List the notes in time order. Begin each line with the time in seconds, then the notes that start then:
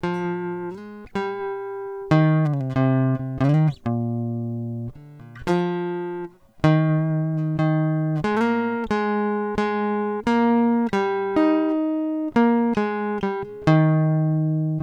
0.04 F3
0.71 G#3
1.17 G3
2.12 D#3
2.78 C3
3.17 C3
3.42 D#3
3.87 A#2
5.48 F3
6.65 D#3
7.60 D#3
8.25 A#3
8.92 G#3
9.59 G#3
10.28 A#3
10.94 G3
11.38 D#4
12.37 A#3
12.79 G#3
13.25 G3
13.44 G#3
13.68 D#3